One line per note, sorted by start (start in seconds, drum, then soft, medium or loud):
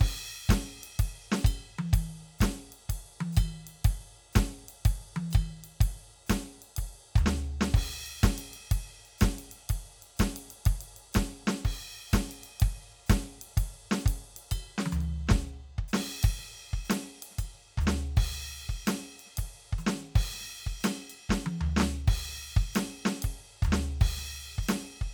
0.01 kick loud
0.01 crash loud
0.47 kick loud
0.47 snare loud
0.47 hi-hat pedal medium
0.51 ride loud
0.84 ride medium
0.99 kick loud
0.99 ride loud
1.32 snare loud
1.39 hi-hat pedal medium
1.45 kick loud
1.45 ride bell loud
1.79 high tom loud
1.93 kick loud
1.93 ride loud
2.39 kick loud
2.39 snare loud
2.39 hi-hat pedal medium
2.39 ride loud
2.72 ride medium
2.89 kick medium
2.89 ride loud
3.21 high tom loud
3.33 hi-hat pedal medium
3.37 kick loud
3.37 ride bell loud
3.67 ride medium
3.85 kick loud
3.85 ride loud
4.33 kick loud
4.33 snare loud
4.33 hi-hat pedal medium
4.33 ride loud
4.69 ride medium
4.85 kick loud
4.85 ride loud
5.16 high tom loud
5.31 hi-hat pedal medium
5.31 ride bell loud
5.35 kick loud
5.64 ride medium
5.81 kick loud
5.81 ride loud
6.27 kick medium
6.27 snare loud
6.27 hi-hat pedal medium
6.27 ride loud
6.62 ride medium
6.77 kick medium
6.77 ride loud
7.16 kick loud
7.16 floor tom loud
7.16 hi-hat pedal medium
7.26 snare loud
7.61 snare loud
7.74 kick loud
7.74 crash loud
8.06 ride medium
8.19 hi-hat pedal medium
8.23 kick loud
8.23 snare loud
8.23 ride loud
8.38 ride loud
8.54 snare soft
8.54 ride medium
8.58 snare soft
8.60 snare soft
8.71 kick loud
8.71 ride loud
9.05 ride soft
9.18 kick loud
9.18 snare loud
9.18 hi-hat pedal medium
9.18 ride loud
9.39 ride medium
9.52 ride medium
9.56 snare soft
9.58 snare soft
9.69 kick medium
9.69 ride loud
10.03 ride medium
10.17 kick loud
10.17 snare loud
10.17 hi-hat pedal medium
10.17 ride loud
10.36 ride loud
10.51 ride medium
10.64 kick loud
10.64 snare soft
10.64 ride loud
10.81 ride medium
10.97 ride medium
11.13 kick loud
11.13 snare loud
11.13 hi-hat pedal medium
11.13 ride loud
11.47 snare loud
11.65 kick loud
11.65 crash loud
12.10 kick loud
12.10 snare loud
12.10 hi-hat pedal medium
12.10 ride loud
12.31 ride medium
12.44 ride medium
12.55 snare soft
12.60 kick loud
12.60 ride loud
13.06 kick loud
13.06 snare loud
13.06 hi-hat pedal medium
13.06 ride loud
13.42 ride medium
13.57 kick loud
13.57 ride loud
13.91 snare loud
13.99 hi-hat pedal medium
14.06 kick loud
14.06 ride loud
14.37 ride medium
14.51 kick medium
14.51 ride bell loud
14.78 snare loud
14.86 high tom loud
14.92 floor tom loud
14.92 hi-hat pedal medium
15.01 ride soft
15.28 kick loud
15.28 snare loud
15.28 high tom soft
15.78 kick medium
15.88 hi-hat pedal medium
15.93 snare loud
15.93 crash loud
16.23 kick loud
16.23 ride loud
16.38 snare soft
16.44 snare soft
16.73 kick medium
16.85 hi-hat pedal medium
16.90 snare loud
16.90 ride loud
17.23 ride loud
17.31 snare soft
17.35 kick medium
17.35 snare soft
17.35 ride bell medium
17.78 kick medium
17.78 floor tom loud
17.78 hi-hat pedal medium
17.87 snare loud
18.17 kick loud
18.17 crash loud
18.31 snare soft
18.69 kick medium
18.86 snare loud
18.86 hi-hat pedal medium
18.86 ride loud
19.20 ride medium
19.26 snare soft
19.30 snare soft
19.38 kick medium
19.38 ride loud
19.73 kick medium
19.78 hi-hat pedal medium
19.78 high tom medium
19.87 snare loud
20.16 kick loud
20.16 crash loud
20.34 snare soft
20.41 snare soft
20.43 snare soft
20.67 kick medium
20.80 hi-hat pedal medium
20.84 snare loud
20.84 ride bell loud
21.10 ride bell medium
21.30 kick medium
21.30 snare loud
21.46 high tom loud
21.61 floor tom loud
21.77 snare loud
21.80 snare loud
22.08 kick loud
22.08 crash loud
22.29 snare soft
22.32 snare soft
22.34 snare soft
22.57 kick loud
22.73 snare loud
22.73 hi-hat pedal medium
22.73 ride loud
23.05 snare loud
23.22 kick medium
23.22 ride loud
23.63 kick loud
23.63 floor tom loud
23.63 hi-hat pedal medium
23.72 snare loud
24.01 kick loud
24.01 crash loud
24.17 snare soft
24.21 snare soft
24.28 snare soft
24.58 kick medium
24.63 hi-hat pedal medium
24.69 snare loud
24.69 ride loud
25.01 kick medium